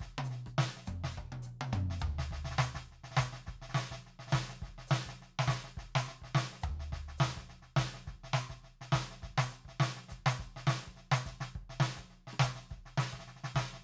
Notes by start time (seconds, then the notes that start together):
0.01 kick, snare
0.08 kick
0.19 high tom
0.25 hi-hat pedal
0.31 snare
0.47 kick, cross-stick
0.59 snare
0.77 snare
0.87 kick, hi-hat pedal, mid tom
0.98 kick
1.04 snare
1.18 kick, high tom
1.25 kick
1.33 high tom
1.43 hi-hat pedal, high tom
1.62 high tom
1.66 hi-hat pedal
1.73 kick, mid tom
1.91 snare
2.00 kick, hi-hat pedal, floor tom
2.19 snare
2.32 kick, snare
2.38 kick
2.42 kick, snare
2.51 snare
2.58 snare, hi-hat pedal
2.75 kick, snare
2.92 snare
3.04 snare
3.12 snare
3.16 kick, snare, hi-hat pedal
3.26 kick
3.33 snare
3.47 kick, snare
3.55 kick
3.62 snare
3.70 snare
3.75 snare, hi-hat pedal
3.91 kick, snare
4.07 snare
4.20 snare
4.28 snare, hi-hat pedal
4.33 kick, snare
4.43 kick
4.49 snare
4.62 kick, snare
4.69 kick
4.79 snare
4.88 snare, hi-hat pedal
5.06 kick, snare
5.22 snare
5.39 snare
5.47 kick, snare, hi-hat pedal
5.54 kick
5.65 snare
5.78 kick, snare
5.85 kick
5.96 snare
6.04 hi-hat pedal
6.08 snare
6.22 kick, snare
6.35 snare
6.53 snare
6.62 kick, hi-hat pedal, floor tom
6.70 kick
6.73 kick
6.80 snare
6.93 kick, snare
7.00 kick
7.09 snare
7.18 snare, hi-hat pedal
7.37 kick, snare
7.50 snare
7.63 snare
7.77 kick, snare, hi-hat pedal
7.85 kick
7.94 snare
8.07 kick, snare
8.14 kick
8.24 snare
8.34 snare, hi-hat pedal
8.50 kick, snare
8.64 snare
8.82 snare
8.93 kick, snare, hi-hat pedal
9.11 snare
9.23 kick, snare
9.30 kick
9.38 snare
9.50 snare, hi-hat pedal
9.66 kick, snare
9.80 snare
9.97 snare
10.09 kick, snare, hi-hat pedal
10.27 snare
10.40 kick, snare
10.46 kick
10.57 snare
10.67 snare, hi-hat pedal
10.83 snare
10.88 kick
10.97 snare
11.12 snare
11.26 kick, snare, hi-hat pedal
11.32 kick
11.41 snare
11.56 kick
11.63 kick
11.70 snare
11.81 snare, hi-hat pedal
11.97 kick, snare
12.11 snare
12.28 snare
12.33 cross-stick
12.40 kick, snare, hi-hat pedal
12.56 snare
12.70 kick, snare
12.78 kick
12.86 snare
12.98 snare, hi-hat pedal
13.13 kick, snare
13.20 snare
13.28 snare
13.37 snare
13.44 snare
13.55 kick, snare, hi-hat pedal
13.61 kick
13.74 snare